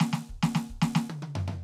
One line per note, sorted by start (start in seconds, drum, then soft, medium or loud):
0.01 snare loud
0.14 snare loud
0.30 kick soft
0.43 snare loud
0.56 snare loud
0.70 kick soft
0.82 snare loud
0.96 snare loud
1.11 high tom loud
1.23 high tom loud
1.36 floor tom loud
1.49 floor tom loud